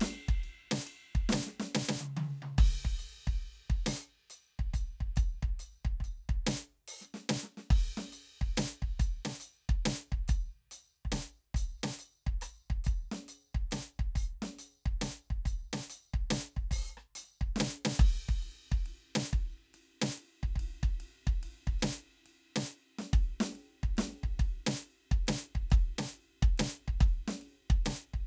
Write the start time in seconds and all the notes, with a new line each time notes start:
0.01 snare, ride bell
0.29 kick
0.44 ride bell
0.72 snare
0.87 ride bell
1.16 kick
1.30 snare
1.33 snare
1.47 snare
1.60 snare
1.75 snare
1.89 snare
2.01 high tom
2.17 high tom
2.43 high tom
2.59 kick, crash
2.85 kick
3.00 closed hi-hat
3.28 kick
3.70 kick
3.87 snare, percussion
4.00 hi-hat pedal
4.31 closed hi-hat
4.44 closed hi-hat
4.60 kick
4.74 closed hi-hat, kick
5.01 kick
5.17 closed hi-hat, kick
5.43 kick
5.60 closed hi-hat
5.85 kick
6.01 kick, closed hi-hat
6.30 kick
6.47 snare, percussion
6.58 hi-hat pedal
6.88 percussion
7.02 snare, hi-hat pedal
7.15 snare
7.30 snare
7.44 snare
7.58 snare
7.71 kick, crash
7.98 snare
8.13 closed hi-hat
8.42 kick
8.58 snare, percussion
8.83 kick
9.00 closed hi-hat, kick
9.26 snare
9.41 closed hi-hat
9.70 kick
9.86 closed hi-hat, snare
10.13 kick
10.29 closed hi-hat, kick
10.72 closed hi-hat
11.06 kick
11.13 closed hi-hat, snare
11.55 closed hi-hat, kick
11.79 hi-hat pedal
11.84 snare
11.99 closed hi-hat
12.27 kick
12.37 kick
12.42 closed hi-hat, cross-stick
12.71 kick
12.85 closed hi-hat, kick
13.12 snare
13.29 closed hi-hat
13.55 kick
13.65 kick
13.72 closed hi-hat, snare
14.00 kick
14.08 snare
14.16 kick, percussion
14.43 snare
14.59 closed hi-hat
14.86 kick
15.02 closed hi-hat, snare
15.31 kick
15.46 closed hi-hat, kick
15.74 snare
15.90 closed hi-hat
16.14 kick
16.31 closed hi-hat, snare
16.57 kick
16.72 kick, percussion
16.98 cross-stick
17.16 closed hi-hat
17.42 kick
17.57 snare, hi-hat pedal
17.61 snare
17.86 snare
18.00 kick, crash
18.29 kick
18.43 ride
18.72 kick
18.86 ride
19.16 snare
19.31 kick, ride
19.51 hi-hat pedal
19.74 hi-hat pedal, ride
20.02 snare
20.18 ride
20.44 kick
20.56 kick, ride
20.84 kick
21.01 ride
21.28 kick
21.44 kick, ride
21.68 kick
21.80 snare, hi-hat pedal, ride
22.26 ride
22.56 snare
22.72 ride
22.99 snare
23.14 kick, ride
23.41 snare
23.56 ride
23.84 kick
23.98 snare, ride
24.24 kick
24.40 kick, ride
24.67 snare
24.84 ride
25.12 kick
25.28 snare, ride
25.56 kick
25.71 kick, ride
25.99 snare
26.14 ride
26.43 kick
26.58 snare, ride
26.88 kick
27.01 kick, ride
27.28 snare
27.42 ride
27.71 kick
27.86 snare, ride
28.14 kick